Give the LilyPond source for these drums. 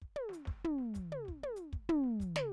\new DrumStaff \drummode { \time 4/4 \tempo 4 = 95 bd16 tommh16 <sn hhp>16 <sn bd>16 tomfh16 sn16 <sn hhp bd>16 tommh16 <sn bd>16 tommh16 <hhp sn>16 <sn bd>16 tomfh16 sn16 <sn bd hhp>16 <sn tommh>16 | }